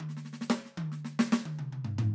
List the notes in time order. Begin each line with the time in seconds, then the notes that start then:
0.00 high tom
0.09 snare
0.17 snare
0.25 snare
0.33 snare
0.41 snare
0.50 snare
0.65 snare
0.77 high tom
0.92 snare
1.05 snare
1.19 snare
1.32 snare
1.45 high tom
1.59 mid tom
1.73 mid tom
1.85 floor tom
1.98 floor tom